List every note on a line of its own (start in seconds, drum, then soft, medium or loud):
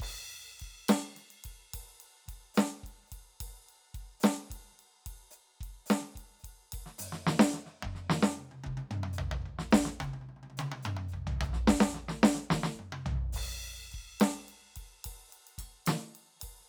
0.01 kick medium
0.01 crash loud
0.60 kick soft
0.60 ride medium
0.89 snare loud
0.89 hi-hat pedal medium
0.89 ride bell loud
1.16 snare soft
1.16 hi-hat pedal soft
1.16 ride medium
1.31 ride medium
1.45 kick soft
1.45 ride medium
1.74 kick soft
1.74 ride loud
1.80 kick soft
2.01 ride medium
2.26 kick soft
2.26 snare soft
2.26 ride medium
2.31 snare soft
2.55 snare loud
2.55 hi-hat pedal medium
2.55 ride loud
2.84 kick soft
2.84 ride medium
3.03 snare soft
3.07 snare soft
3.07 hi-hat pedal soft
3.12 kick soft
3.12 ride medium
3.41 kick soft
3.41 ride loud
3.48 kick soft
3.69 ride soft
3.95 kick soft
3.95 ride medium
4.01 kick soft
4.21 snare loud
4.21 hi-hat pedal medium
4.21 ride loud
4.51 kick soft
4.51 ride medium
4.72 snare soft
4.77 snare soft
4.77 ride soft
5.07 kick soft
5.07 ride medium
5.31 hi-hat pedal medium
5.31 ride soft
5.61 kick soft
5.61 ride medium
5.68 kick soft
5.87 hi-hat pedal medium
5.91 snare loud
5.91 ride loud
6.02 snare soft
6.16 kick soft
6.16 ride medium
6.38 snare soft
6.38 hi-hat pedal soft
6.44 kick soft
6.44 ride medium
6.73 kick soft
6.73 ride loud
6.81 kick soft
6.87 snare soft
6.99 hi-hat pedal loud
6.99 mid tom medium
7.13 snare medium
7.27 snare loud
7.40 snare loud
7.54 snare soft
7.67 snare soft
7.83 kick soft
7.83 mid tom loud
7.92 kick soft
7.92 snare soft
8.10 snare loud
8.23 snare loud
8.38 high tom medium
8.52 high tom medium
8.64 kick soft
8.64 high tom loud
8.73 kick soft
8.78 closed hi-hat soft
8.78 high tom medium
8.88 kick soft
8.88 mid tom loud
9.04 mid tom medium
9.14 hi-hat pedal medium
9.19 floor tom loud
9.32 floor tom loud
9.42 kick soft
9.46 floor tom medium
9.59 snare medium
9.71 kick soft
9.71 snare loud
9.71 hi-hat pedal soft
9.86 snare medium
10.01 kick soft
10.01 hi-hat pedal soft
10.01 high tom loud
10.14 high tom medium
10.22 high tom soft
10.30 high tom soft
10.37 high tom soft
10.44 high tom medium
10.51 high tom medium
10.58 hi-hat pedal medium
10.58 high tom loud
10.72 high tom loud
10.83 hi-hat pedal medium
10.83 mid tom loud
10.97 mid tom medium
11.09 kick soft
11.09 hi-hat pedal soft
11.14 floor tom medium
11.28 floor tom loud
11.41 kick soft
11.41 hi-hat pedal soft
11.41 floor tom loud
11.54 snare medium
11.68 kick soft
11.68 snare loud
11.77 kick soft
11.77 snare loud
11.95 snare soft
12.09 snare medium
12.24 snare loud
12.35 snare soft
12.51 kick soft
12.51 snare loud
12.64 snare loud
12.75 kick soft
12.80 mid tom medium
12.93 high tom loud
13.07 floor tom loud
13.33 kick medium
13.33 hi-hat pedal medium
13.33 crash loud
13.42 kick soft
13.93 kick soft
13.93 ride soft
14.00 kick soft
14.21 snare loud
14.21 hi-hat pedal medium
14.21 ride loud
14.47 hi-hat pedal soft
14.47 ride medium
14.77 kick soft
14.77 ride medium
15.05 kick soft
15.05 ride loud
15.29 hi-hat pedal soft
15.29 ride medium
15.48 ride medium
15.59 kick soft
15.59 snare soft
15.59 ride bell medium
15.64 kick soft
15.86 snare loud
15.86 hi-hat pedal medium
15.86 ride bell loud
15.98 snare soft
16.16 ride medium
16.37 snare soft
16.37 hi-hat pedal soft
16.42 kick soft
16.42 ride loud
16.60 snare soft